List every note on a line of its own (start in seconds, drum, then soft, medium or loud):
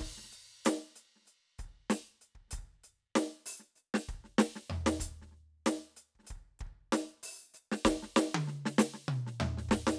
0.01 kick soft
0.01 crash medium
0.07 kick soft
0.18 snare soft
0.24 snare soft
0.28 snare soft
0.31 closed hi-hat soft
0.31 snare soft
0.65 closed hi-hat loud
0.65 snare loud
0.96 closed hi-hat soft
1.16 snare soft
1.22 snare soft
1.22 hi-hat pedal soft
1.26 closed hi-hat soft
1.26 snare soft
1.59 closed hi-hat soft
1.59 kick soft
1.90 open hi-hat medium
1.90 snare loud
1.90 hi-hat pedal soft
2.21 closed hi-hat soft
2.35 kick soft
2.48 snare soft
2.50 closed hi-hat medium
2.50 kick soft
2.50 snare soft
2.59 kick soft
2.84 closed hi-hat soft
3.16 closed hi-hat medium
3.16 snare loud
3.46 open hi-hat loud
3.60 snare soft
3.76 closed hi-hat soft
3.76 hi-hat pedal soft
3.94 snare medium
4.09 kick soft
4.09 closed hi-hat soft
4.15 kick soft
4.18 kick soft
4.24 snare soft
4.39 snare loud
4.56 snare soft
4.70 floor tom loud
4.87 snare loud
5.00 closed hi-hat loud
5.00 kick soft
5.06 kick soft
5.09 kick soft
5.22 snare soft
5.27 snare soft
5.32 snare soft
5.36 closed hi-hat soft
5.66 closed hi-hat medium
5.66 snare loud
5.97 closed hi-hat soft
6.15 kick soft
6.19 snare soft
6.24 closed hi-hat medium
6.24 snare soft
6.29 kick soft
6.29 snare soft
6.60 kick soft
6.60 closed hi-hat soft
6.67 kick soft
6.93 closed hi-hat medium
6.93 snare loud
7.23 open hi-hat loud
7.54 hi-hat pedal medium
7.72 snare medium
7.85 kick soft
7.85 snare loud
7.91 kick soft
8.03 snare soft
8.17 snare loud
8.35 high tom loud
8.48 snare soft
8.66 snare medium
8.79 snare loud
8.79 hi-hat pedal loud
8.94 snare soft
9.08 mid tom loud
9.27 snare soft
9.40 floor tom loud
9.58 snare soft
9.69 kick soft
9.69 snare loud
9.87 snare loud